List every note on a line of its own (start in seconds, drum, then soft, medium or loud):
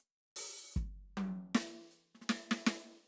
0.00 closed hi-hat soft
0.36 open hi-hat loud
0.74 kick medium
0.74 hi-hat pedal soft
1.17 closed hi-hat soft
1.17 high tom loud
1.55 snare loud
1.91 hi-hat pedal soft
2.15 snare soft
2.21 snare soft
2.29 snare loud
2.51 snare medium
2.67 snare loud